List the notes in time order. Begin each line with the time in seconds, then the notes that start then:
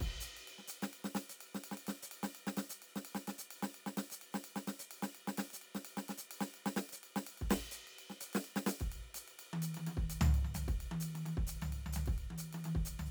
0.01 kick, ride
0.21 hi-hat pedal
0.25 ride
0.37 ride
0.48 ride
0.59 snare
0.68 hi-hat pedal, ride
0.83 snare, ride
0.94 ride
1.05 snare
1.15 snare, ride
1.30 hi-hat pedal, ride
1.41 ride
1.55 snare
1.64 ride
1.72 snare
1.78 ride
1.87 snare, ride
2.03 hi-hat pedal
2.12 ride
2.24 snare, ride
2.35 ride
2.47 snare
2.57 snare, ride
2.70 hi-hat pedal, ride
2.83 ride
2.89 hi-hat pedal
2.96 snare
3.05 ride
3.15 snare, ride
3.28 snare
3.39 hi-hat pedal
3.51 ride
3.58 hi-hat pedal
3.63 snare, ride
3.75 ride
3.87 snare
3.98 snare, ride
4.11 hi-hat pedal, ride
4.22 ride
4.32 snare, hi-hat pedal
4.45 ride
4.56 snare, ride
4.68 snare, ride
4.80 hi-hat pedal
4.91 ride
4.99 hi-hat pedal
5.03 snare, ride
5.15 ride
5.28 snare
5.38 snare, ride
5.51 hi-hat pedal, ride
5.62 ride
5.75 snare
5.85 ride
5.98 snare, ride
6.09 snare, ride
6.18 hi-hat pedal
6.31 ride
6.41 snare, ride
6.54 ride
6.66 snare
6.77 snare, ride
6.90 hi-hat pedal, ride
7.04 ride
7.17 snare
7.27 ride
7.38 kick, ride
7.50 snare, ride
7.72 hi-hat pedal, ride
7.88 ride
7.99 ride
8.10 snare
8.21 hi-hat pedal, ride
8.34 snare, ride
8.45 ride
8.57 snare
8.67 snare, hi-hat pedal, ride
8.81 kick, ride
8.91 hi-hat pedal, ride
9.15 hi-hat pedal, ride
9.28 ride
9.40 ride
9.54 high tom
9.62 hi-hat pedal, ride
9.75 high tom, ride
9.87 high tom, ride
9.97 kick
10.10 hi-hat pedal, ride
10.21 floor tom, ride
10.35 ride
10.45 floor tom
10.55 floor tom, hi-hat pedal, ride
10.68 kick, ride
10.81 ride
10.92 high tom
11.01 hi-hat pedal, ride
11.16 high tom, ride
11.26 high tom, ride
11.38 kick
11.47 hi-hat pedal, ride
11.62 floor tom, ride
11.73 ride
11.87 floor tom
11.93 floor tom, hi-hat pedal, ride
12.07 kick, ride
12.13 hi-hat pedal
12.18 ride
12.31 high tom
12.38 hi-hat pedal, ride
12.53 high tom, ride
12.59 hi-hat pedal
12.65 high tom, ride
12.75 kick
12.86 hi-hat pedal, ride
13.00 floor tom, ride
13.06 hi-hat pedal